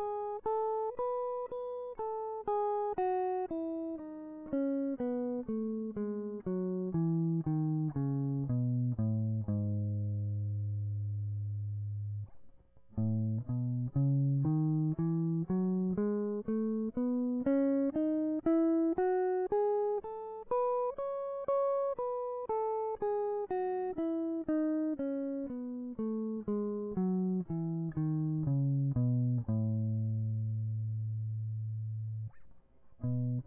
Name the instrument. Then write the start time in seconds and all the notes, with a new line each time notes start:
electric guitar
0.00 G#4
0.46 A4
1.00 B4
1.51 B4
2.00 A4
2.48 G#4
2.99 F#4
3.49 E4
3.97 D#4
4.54 C#4
5.01 B3
5.50 A3
5.98 G#3
6.48 F#3
6.96 E3
7.48 D#3
7.98 C#3
8.52 B2
9.01 A2
9.51 G#2
13.00 A2
13.52 B2
13.98 C#3
14.46 D#3
15.00 E3
15.51 F#3
15.99 G#3
16.49 A3
16.98 B3
17.47 C#4
17.96 D#4
18.47 E4
18.99 F#4
19.52 G#4
20.03 A4
20.52 B4
20.99 C#5
21.49 C#5
21.99 B4
22.50 A4
23.03 G#4
23.51 F#4
23.99 E4
24.49 D#4
24.99 C#4
25.49 B3
26.00 A3
26.49 G#3
26.98 F#3
27.99 D#3
28.49 C#3
28.99 B2
29.51 A2
33.07 B2